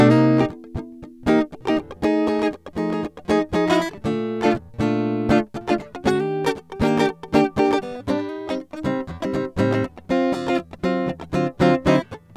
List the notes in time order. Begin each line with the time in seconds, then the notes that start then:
0.00 B2 A3 D4 G4
0.12 C3 A#3 D#4
0.40 D#4 G4
1.27 A#3 D#4 G4
1.69 D#4 G4
2.03 A3 D#4 G#4
2.28 A3 D#4 G#4
2.43 D#4 G#4
2.77 F3 A3 D#4 G#4
2.94 D#4 G#4
3.30 F3 A3 D#4 G#4
3.53 F3 D#4 G#4
3.69 D#4 E4 F#4
3.82 E4
4.05 A#2 D3 A3 D4 F4
4.42 F4 A4
4.46 A3 D4
4.80 A#2 A3 D4 F4
5.30 A3 D4 F4
5.57 F4
5.69 D4 F4
6.05 D3 F#4
6.21 D#3 G4
6.48 G4
6.81 D#3 A#3 D4 G4
6.99 D4 G4
7.34 D#3 A3 D4 G4
7.57 D#3 A#3 D4 G4
7.72 D4 G4
7.84 G3 B3
8.09 G3 C4 D4
8.30 D#4
8.51 G3 C4 D#4
8.74 D#4
8.86 G3 C4 D#4
9.08 E2 C4
9.23 C4 D#4
9.35 G3 C4 D#4
9.45 G3
9.57 A2 G3 C4 D#4
9.72 G3 C4 D#4
10.11 C4 F4
10.33 D3 C4 F4
10.50 C4 F4
10.84 F#3 C4 F4
11.07 D3 F#3
11.34 D3 F#3 C4 F4
11.61 D3 F#3 C4 F4
11.87 D3 F#3 C4 D#4 E4
12.12 D3